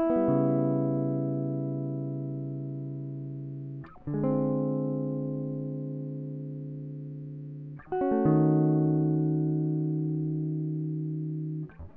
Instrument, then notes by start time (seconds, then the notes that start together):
electric guitar
0.00 E4
0.10 G3 B3
0.29 C#3
4.08 D3
4.14 G#3
4.24 C4 F4
7.92 F#4
8.02 C#4
8.12 A3
8.26 D#3